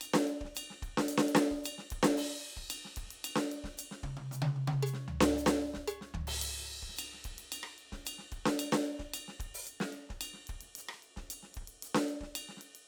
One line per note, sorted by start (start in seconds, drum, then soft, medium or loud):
0.01 hi-hat pedal medium
0.01 ride bell loud
0.14 snare loud
0.27 ride soft
0.41 kick soft
0.41 snare soft
0.55 hi-hat pedal medium
0.55 ride bell loud
0.70 snare soft
0.82 kick soft
0.82 ride soft
0.89 kick soft
0.97 snare medium
1.08 hi-hat pedal medium
1.08 ride bell medium
1.18 snare loud
1.28 ride medium
1.35 snare loud
1.51 kick soft
1.64 hi-hat pedal medium
1.64 ride bell loud
1.78 snare soft
1.91 kick soft
1.91 ride medium
1.98 kick soft
2.01 kick soft
2.01 snare loud
2.17 hi-hat pedal medium
2.17 crash loud
2.57 kick soft
2.57 snare soft
2.70 hi-hat pedal medium
2.70 ride bell loud
2.85 snare soft
2.91 cross-stick soft
2.96 kick soft
2.96 ride medium
3.03 kick soft
3.03 snare soft
3.11 ride medium
3.24 hi-hat pedal medium
3.24 ride bell loud
3.36 snare medium
3.41 cross-stick soft
3.52 ride medium
3.64 kick soft
3.64 snare soft
3.77 hi-hat pedal medium
3.77 ride bell medium
3.91 snare soft
4.03 kick soft
4.03 high tom medium
4.17 high tom medium
4.31 hi-hat pedal medium
4.31 high tom medium
4.42 high tom loud
4.56 high tom medium
4.68 high tom loud
4.73 kick soft
4.83 hi-hat pedal medium
4.83 percussion loud
4.94 snare soft
5.08 floor tom medium
5.21 snare loud
5.35 snare soft
5.35 hi-hat pedal medium
5.46 snare loud
5.74 kick soft
5.74 snare soft
5.88 hi-hat pedal medium
5.88 percussion loud
6.01 snare soft
6.14 kick soft
6.14 floor tom medium
6.21 kick soft
6.27 crash loud
6.42 hi-hat pedal medium
6.42 ride loud
6.69 ride soft
6.82 kick soft
6.89 snare soft
6.96 hi-hat pedal medium
6.96 ride bell loud
7.14 snare soft
7.20 cross-stick soft
7.24 kick soft
7.24 ride medium
7.31 kick soft
7.31 snare soft
7.38 snare soft
7.38 ride medium
7.52 hi-hat pedal medium
7.52 ride bell loud
7.63 cross-stick medium
7.78 ride soft
7.92 kick soft
7.92 snare soft
8.05 hi-hat pedal medium
8.05 ride bell loud
8.18 snare soft
8.32 kick soft
8.32 ride soft
8.46 snare loud
8.59 hi-hat pedal medium
8.59 ride bell loud
8.72 snare loud
8.85 ride soft
8.99 kick soft
8.99 snare soft
9.14 hi-hat pedal medium
9.14 ride bell loud
9.28 snare soft
9.40 kick soft
9.40 ride medium
9.46 kick soft
9.54 open hi-hat loud
9.66 hi-hat pedal medium
9.66 ride bell medium
9.80 snare medium
9.93 ride soft
10.09 kick soft
10.09 snare soft
10.21 hi-hat pedal medium
10.21 ride bell loud
10.33 snare soft
10.41 cross-stick soft
10.47 kick soft
10.47 ride medium
10.55 kick soft
10.61 snare soft
10.61 ride medium
10.65 snare soft
10.75 hi-hat pedal medium
10.75 ride medium
10.89 cross-stick medium
10.94 cross-stick soft
11.02 ride soft
11.16 kick soft
11.16 snare soft
11.22 kick soft
11.30 hi-hat pedal medium
11.30 ride bell medium
11.43 snare soft
11.51 snare soft
11.51 ride medium
11.57 kick soft
11.61 snare soft
11.67 snare soft
11.67 ride medium
11.83 hi-hat pedal medium
11.83 ride medium
11.95 snare loud
12.08 ride soft
12.21 kick soft
12.21 snare soft
12.35 hi-hat pedal medium
12.35 ride bell loud
12.49 snare soft
12.57 snare soft
12.61 ride medium
12.75 ride medium